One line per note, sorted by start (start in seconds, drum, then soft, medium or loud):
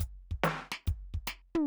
0.03 closed hi-hat loud
0.03 kick medium
0.31 kick soft
0.43 closed hi-hat loud
0.43 snare loud
0.72 snare loud
0.86 closed hi-hat medium
0.86 kick medium
0.86 snare soft
1.14 kick soft
1.27 closed hi-hat loud
1.27 snare loud
1.54 floor tom loud